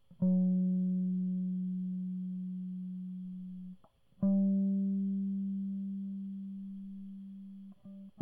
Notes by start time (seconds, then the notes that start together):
0.23 F#3
4.24 G3